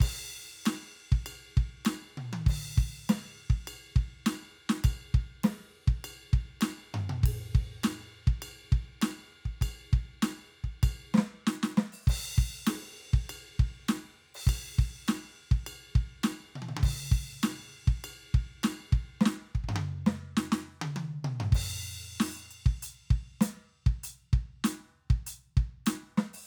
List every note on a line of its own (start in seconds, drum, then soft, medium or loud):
0.01 kick loud
0.01 ride bell loud
0.01 crash loud
0.66 snare loud
0.66 ride bell loud
1.12 kick loud
1.26 ride bell loud
1.57 kick loud
1.85 snare loud
1.85 ride bell loud
2.18 mid tom loud
2.33 high tom loud
2.47 kick loud
2.47 crash loud
2.78 kick loud
2.78 snare soft
3.10 snare loud
3.10 ride bell loud
3.50 kick loud
3.68 ride bell loud
3.96 kick loud
3.96 snare soft
4.26 snare loud
4.26 ride bell loud
4.70 snare loud
4.84 kick loud
4.84 ride bell loud
5.15 kick loud
5.44 snare loud
5.44 ride loud
5.88 kick loud
6.04 ride bell loud
6.33 kick loud
6.33 snare soft
6.61 snare loud
6.61 ride bell loud
6.94 floor tom loud
7.10 mid tom loud
7.24 kick loud
7.24 ride loud
7.55 kick loud
7.55 snare soft
7.84 snare loud
7.84 ride bell loud
8.28 kick loud
8.28 snare soft
8.42 ride bell loud
8.72 kick loud
8.72 snare soft
9.02 snare loud
9.02 ride bell loud
9.46 kick medium
9.62 kick loud
9.62 ride bell loud
9.93 kick loud
9.93 snare soft
10.23 snare loud
10.23 ride bell loud
10.64 kick medium
10.83 kick loud
10.83 ride bell loud
11.14 snare loud
11.18 snare loud
11.47 snare loud
11.52 hi-hat pedal medium
11.63 snare loud
11.78 snare loud
11.93 open hi-hat medium
12.08 kick loud
12.08 crash loud
12.38 kick loud
12.67 snare loud
12.67 ride loud
13.14 kick loud
13.14 snare soft
13.30 ride bell loud
13.60 kick loud
13.89 snare loud
13.89 ride bell loud
14.35 crash loud
14.47 kick loud
14.47 ride bell loud
14.79 kick loud
15.08 snare loud
15.08 ride bell loud
15.52 kick loud
15.67 ride bell loud
15.96 kick loud
16.24 snare loud
16.24 ride bell loud
16.56 mid tom medium
16.62 high tom medium
16.69 mid tom medium
16.77 high tom loud
16.83 kick loud
16.83 crash loud
17.12 kick loud
17.43 snare loud
17.43 ride bell loud
17.88 kick loud
18.04 ride bell loud
18.34 kick loud
18.34 snare soft
18.64 snare loud
18.64 ride bell loud
18.93 kick loud
18.93 snare soft
19.21 snare loud
19.26 snare loud
19.55 kick medium
19.64 kick soft
19.69 floor tom loud
19.76 high tom loud
20.07 snare loud
20.37 snare loud
20.52 snare loud
20.82 high tom loud
20.96 high tom loud
21.25 mid tom loud
21.40 floor tom loud
21.53 kick loud
21.53 crash loud
22.20 open hi-hat loud
22.20 snare loud
22.51 closed hi-hat medium
22.66 kick loud
22.83 closed hi-hat loud
23.11 kick loud
23.41 closed hi-hat loud
23.41 snare loud
23.87 kick loud
24.04 closed hi-hat loud
24.33 kick loud
24.64 closed hi-hat loud
24.64 snare loud
25.10 kick loud
25.27 closed hi-hat loud
25.57 kick loud
25.86 closed hi-hat loud
25.86 snare loud
26.18 snare loud
26.34 open hi-hat loud